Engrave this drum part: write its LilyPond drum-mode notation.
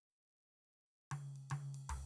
\new DrumStaff \drummode { \time 4/4 \tempo 4 = 110 r4 r4 <tommh cymr>8 cymr16 <cymr tommh>16 r16 cymr16 <tomfh cymr>8 | }